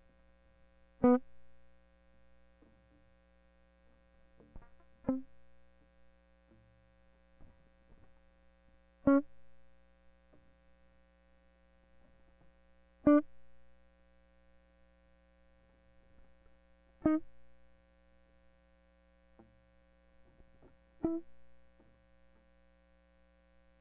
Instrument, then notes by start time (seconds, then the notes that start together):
electric guitar
1.05 B3
5.09 C4
9.08 C#4
13.07 D4
17.06 D#4
21.05 E4